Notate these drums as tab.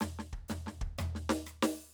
HH |p--p--p--po-|
SD |oo-oo-rgoro-|
FT |og-oo-o-----|
BD |--o--o------|